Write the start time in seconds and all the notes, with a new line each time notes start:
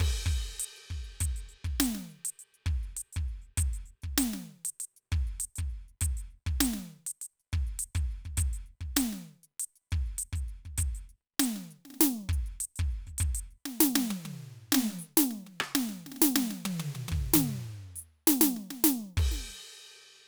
0.00 kick, crash
0.13 closed hi-hat
0.26 closed hi-hat, kick
0.43 closed hi-hat
0.59 closed hi-hat
0.76 closed hi-hat
0.90 kick, closed hi-hat
1.04 closed hi-hat
1.20 closed hi-hat, kick
1.36 closed hi-hat
1.49 closed hi-hat
1.64 kick, closed hi-hat
1.80 closed hi-hat, kick, snare
1.95 snare
2.10 closed hi-hat
2.25 closed hi-hat
2.39 closed hi-hat
2.54 closed hi-hat
2.66 kick, closed hi-hat
2.83 closed hi-hat
2.96 closed hi-hat
3.12 closed hi-hat, kick
3.28 closed hi-hat
3.42 closed hi-hat
3.57 closed hi-hat, kick
3.73 closed hi-hat
3.85 closed hi-hat
4.02 kick, closed hi-hat
4.18 closed hi-hat, snare
4.33 snare
4.47 closed hi-hat
4.65 closed hi-hat
4.80 closed hi-hat
4.96 closed hi-hat
5.12 kick, closed hi-hat
5.27 closed hi-hat
5.40 closed hi-hat
5.55 closed hi-hat, kick
5.70 closed hi-hat
5.88 closed hi-hat
6.01 closed hi-hat, kick
6.17 closed hi-hat
6.30 closed hi-hat
6.46 kick, closed hi-hat
6.60 closed hi-hat, snare
6.73 snare
6.90 closed hi-hat
7.06 closed hi-hat
7.21 closed hi-hat
7.40 closed hi-hat
7.52 kick, closed hi-hat
7.67 closed hi-hat
7.79 closed hi-hat
7.95 closed hi-hat, kick
8.11 closed hi-hat
8.25 kick, closed hi-hat
8.37 closed hi-hat, kick
8.53 closed hi-hat
8.66 closed hi-hat
8.81 kick
8.96 closed hi-hat, snare
9.12 snare
9.27 closed hi-hat
9.43 closed hi-hat
9.60 closed hi-hat
9.76 closed hi-hat
9.91 kick, closed hi-hat
10.06 closed hi-hat
10.18 closed hi-hat
10.33 closed hi-hat, kick
10.48 closed hi-hat
10.65 kick, closed hi-hat
10.78 closed hi-hat, kick
10.95 closed hi-hat
11.09 closed hi-hat
11.39 closed hi-hat, snare
11.56 snare
11.71 closed hi-hat
11.85 snare
11.90 snare
11.94 snare
12.01 snare
12.29 kick
12.33 closed hi-hat
12.46 closed hi-hat
12.60 closed hi-hat
12.76 closed hi-hat, kick
12.90 closed hi-hat
13.07 closed hi-hat, kick
13.18 closed hi-hat, kick
13.35 closed hi-hat
13.51 closed hi-hat
13.65 snare
13.80 snare
13.95 snare
14.10 high tom
14.25 high tom
14.72 snare
14.74 snare
14.90 snare
14.99 hi-hat pedal
15.17 snare
15.31 snare
15.46 high tom
15.60 cross-stick
15.75 snare
15.89 snare
16.06 snare
16.12 snare
16.16 snare
16.22 snare
16.36 snare
16.50 snare
16.65 high tom
16.80 mid tom
16.95 mid tom
17.08 kick, mid tom
17.34 snare, mid tom
17.96 hi-hat pedal
18.27 snare
18.41 snare
18.56 snare
18.70 snare
18.84 snare
19.17 kick, crash
19.31 snare